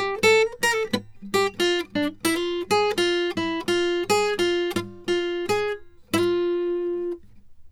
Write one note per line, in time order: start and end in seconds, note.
0.00 0.21 G4
0.25 0.44 A4
0.44 0.56 A#4
0.65 0.74 A#4
0.75 0.85 A4
0.85 1.01 G4
1.36 1.53 G4
1.62 1.86 F4
1.97 2.14 D4
2.27 2.36 E4
2.36 2.68 F4
2.73 2.97 G#4
3.00 3.35 F4
3.39 3.65 E4
3.70 4.08 F4
4.11 4.45 G#4
4.41 4.75 F4
4.78 4.85 F4
5.10 5.51 F4
5.51 5.86 G#4
6.15 7.21 F4